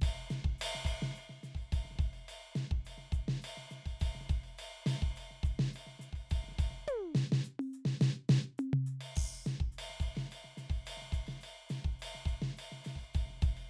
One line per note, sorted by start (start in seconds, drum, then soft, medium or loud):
0.01 kick medium
0.01 hi-hat pedal medium
0.01 ride medium
0.17 kick soft
0.30 snare medium
0.30 hi-hat pedal medium
0.44 kick medium
0.44 snare soft
0.58 hi-hat pedal medium
0.58 ride loud
0.75 snare soft
0.85 kick soft
0.85 hi-hat pedal medium
0.85 ride medium
1.01 snare medium
1.01 ride soft
1.15 hi-hat pedal medium
1.15 ride bell soft
1.29 snare soft
1.43 snare soft
1.43 hi-hat pedal medium
1.43 ride soft
1.55 kick soft
1.55 ride soft
1.72 kick medium
1.72 hi-hat pedal medium
1.72 ride bell medium
1.85 snare soft
1.91 snare soft
1.96 kick medium
1.96 snare soft
2.00 hi-hat pedal soft
2.00 ride soft
2.13 snare soft
2.13 ride soft
2.28 hi-hat pedal medium
2.28 ride bell medium
2.55 snare medium
2.55 hi-hat pedal medium
2.71 kick soft
2.71 snare soft
2.85 hi-hat pedal medium
2.85 ride bell medium
2.98 snare soft
3.12 kick soft
3.12 hi-hat pedal medium
3.12 ride soft
3.28 snare medium
3.28 ride soft
3.42 hi-hat pedal medium
3.42 ride bell medium
3.57 snare soft
3.70 snare soft
3.70 hi-hat pedal medium
3.70 ride soft
3.86 kick soft
3.86 ride soft
4.00 kick soft
4.00 hi-hat pedal medium
4.00 ride bell medium
4.15 snare soft
4.21 snare soft
4.27 kick medium
4.27 snare soft
4.27 hi-hat pedal medium
4.27 ride soft
4.43 ride soft
4.58 hi-hat pedal medium
4.58 ride bell medium
4.86 snare medium
4.86 hi-hat pedal medium
4.86 ride medium
5.02 kick soft
5.02 snare soft
5.16 hi-hat pedal medium
5.16 ride bell medium
5.31 snare soft
5.43 kick medium
5.43 hi-hat pedal medium
5.43 ride soft
5.59 snare medium
5.59 ride soft
5.73 hi-hat pedal medium
5.73 ride bell medium
5.87 snare soft
5.99 snare soft
5.99 hi-hat pedal medium
5.99 ride soft
6.13 kick soft
6.13 ride soft
6.30 kick medium
6.30 hi-hat pedal medium
6.30 ride bell medium
6.44 snare soft
6.48 snare soft
6.52 snare soft
6.59 kick medium
6.59 hi-hat pedal medium
6.59 ride medium
6.71 snare soft
6.87 hi-hat pedal medium
6.87 high tom loud
7.15 snare medium
7.15 hi-hat pedal medium
7.32 snare medium
7.44 hi-hat pedal medium
7.59 open hi-hat soft
7.59 high tom loud
7.73 hi-hat pedal medium
7.85 snare medium
8.01 snare loud
8.01 hi-hat pedal medium
8.29 snare loud
8.29 hi-hat pedal medium
8.58 closed hi-hat soft
8.58 hi-hat pedal medium
8.58 high tom loud
8.73 floor tom loud
8.86 hi-hat pedal medium
9.01 ride medium
9.16 kick soft
9.16 hi-hat pedal medium
9.16 crash medium
9.45 snare medium
9.45 hi-hat pedal medium
9.60 kick soft
9.60 snare soft
9.72 hi-hat pedal medium
9.78 ride medium
9.90 snare soft
10.00 kick soft
10.00 hi-hat pedal medium
10.00 ride soft
10.15 snare medium
10.15 ride soft
10.31 hi-hat pedal medium
10.31 ride medium
10.44 snare soft
10.57 snare soft
10.57 hi-hat pedal medium
10.57 ride soft
10.70 kick soft
10.70 ride soft
10.86 hi-hat pedal medium
10.86 ride bell medium
10.97 snare soft
11.02 snare soft
11.07 snare soft
11.12 kick soft
11.12 hi-hat pedal medium
11.12 ride soft
11.27 snare soft
11.27 ride soft
11.41 hi-hat pedal medium
11.41 ride bell medium
11.69 snare medium
11.69 hi-hat pedal medium
11.69 ride soft
11.85 kick soft
11.85 snare soft
11.99 hi-hat pedal medium
11.99 ride bell medium
12.15 snare soft
12.26 kick soft
12.26 hi-hat pedal medium
12.26 ride soft
12.42 snare medium
12.42 ride soft
12.57 hi-hat pedal medium
12.57 ride bell medium
12.72 snare soft
12.84 snare soft
12.84 hi-hat pedal medium
12.84 ride soft
12.96 kick soft
12.96 ride soft
13.14 kick medium
13.14 hi-hat pedal medium
13.14 ride soft
13.26 snare soft
13.30 snare soft
13.35 snare soft
13.37 snare soft
13.42 kick medium
13.42 hi-hat pedal medium
13.42 ride soft
13.57 ride soft